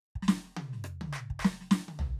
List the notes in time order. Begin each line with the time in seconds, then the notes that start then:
0.16 kick
0.23 snare
0.29 snare
0.44 snare
0.57 high tom
0.73 snare
0.85 cross-stick
1.02 high tom
1.13 percussion
1.30 kick
1.40 percussion
1.45 snare
1.61 snare
1.71 snare
1.89 high tom
2.00 floor tom